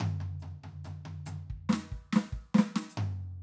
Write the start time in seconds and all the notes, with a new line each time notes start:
0.01 floor tom, hi-hat pedal, high tom
0.21 floor tom, high tom
0.40 floor tom, hi-hat pedal, high tom
0.64 floor tom, high tom
0.85 floor tom, hi-hat pedal, high tom
1.06 floor tom, high tom
1.26 floor tom, hi-hat pedal, high tom
1.50 kick
1.70 snare
1.73 snare
1.92 kick
2.13 snare
2.16 snare
2.33 kick
2.55 snare
2.59 snare
2.76 snare
2.90 hi-hat pedal
2.98 floor tom